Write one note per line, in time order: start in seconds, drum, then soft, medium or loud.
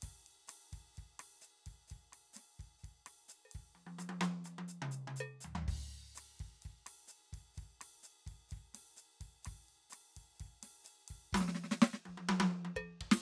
0.01 kick soft
0.01 snare soft
0.01 hi-hat pedal soft
0.01 ride medium
0.08 kick soft
0.26 ride soft
0.47 cross-stick soft
0.47 hi-hat pedal medium
0.47 ride medium
0.73 kick soft
0.73 ride soft
0.94 kick soft
0.94 hi-hat pedal soft
0.94 ride soft
1.19 cross-stick soft
1.19 snare soft
1.19 ride medium
1.41 hi-hat pedal medium
1.41 ride soft
1.66 kick soft
1.66 ride soft
1.88 kick soft
1.88 hi-hat pedal soft
1.88 ride soft
1.96 kick soft
2.12 cross-stick soft
2.12 snare soft
2.12 ride medium
2.33 snare soft
2.33 hi-hat pedal medium
2.33 ride medium
2.59 kick soft
2.59 ride soft
2.79 hi-hat pedal soft
2.84 kick soft
2.84 ride soft
3.06 cross-stick soft
3.06 ride medium
3.28 hi-hat pedal medium
3.28 ride soft
3.45 percussion soft
3.51 kick soft
3.51 ride medium
3.60 kick soft
3.75 high tom soft
3.87 high tom soft
3.99 hi-hat pedal medium
3.99 high tom medium
4.09 high tom medium
4.21 hi-hat pedal medium
4.21 high tom loud
4.44 hi-hat pedal medium
4.44 high tom soft
4.58 high tom medium
4.68 hi-hat pedal medium
4.82 mid tom medium
4.91 hi-hat pedal medium
5.07 mid tom medium
5.16 hi-hat pedal medium
5.20 percussion loud
5.41 hi-hat pedal loud
5.45 floor tom soft
5.55 floor tom medium
5.68 kick soft
5.68 hi-hat pedal medium
5.68 crash medium
5.75 kick soft
6.15 cross-stick soft
6.15 hi-hat pedal medium
6.15 ride medium
6.40 kick soft
6.40 ride soft
6.45 kick soft
6.62 kick soft
6.62 hi-hat pedal soft
6.62 ride soft
6.70 kick soft
6.86 cross-stick soft
6.86 ride medium
7.08 hi-hat pedal medium
7.08 ride soft
7.33 kick soft
7.33 ride soft
7.38 kick soft
7.54 kick soft
7.54 hi-hat pedal soft
7.54 ride soft
7.63 kick soft
7.81 cross-stick soft
7.81 snare soft
7.81 ride medium
8.03 hi-hat pedal medium
8.03 ride soft
8.27 kick soft
8.27 ride soft
8.32 kick soft
8.49 kick soft
8.49 hi-hat pedal soft
8.49 ride soft
8.57 kick soft
8.74 snare soft
8.74 ride medium
8.96 hi-hat pedal medium
8.96 ride soft
9.21 kick soft
9.21 ride soft
9.43 cross-stick soft
9.43 snare soft
9.43 hi-hat pedal soft
9.43 ride medium
9.47 kick soft
9.52 kick soft
9.69 ride soft
9.90 cross-stick soft
9.90 snare soft
9.90 hi-hat pedal medium
9.90 ride medium
10.17 kick soft
10.17 ride soft
10.35 hi-hat pedal soft
10.40 kick soft
10.40 ride soft
10.46 kick soft
10.63 snare soft
10.63 ride medium
10.84 hi-hat pedal medium
10.84 ride soft
11.08 kick soft
11.08 ride medium
11.33 kick soft
11.33 hi-hat pedal loud
11.33 high tom loud
11.41 snare soft
11.48 snare soft
11.55 snare soft
11.64 snare soft
11.71 snare medium
11.82 snare loud
11.93 snare soft
12.05 kick soft
12.05 high tom medium
12.18 high tom medium
12.28 kick soft
12.28 high tom loud
12.40 high tom loud
12.51 high tom soft
12.65 high tom medium
12.76 kick soft
12.76 percussion loud
13.01 kick soft
13.01 floor tom medium
13.06 kick soft
13.11 snare loud